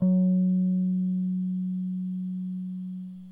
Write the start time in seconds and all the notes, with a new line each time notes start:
0.03 F#3